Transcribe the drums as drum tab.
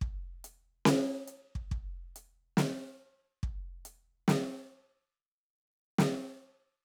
HH |---x-----x-----x--------|---x--------------------|
SD |------o-----------o-----|------o-----------o-----|
BD |o----------oo-----------|o-----------------------|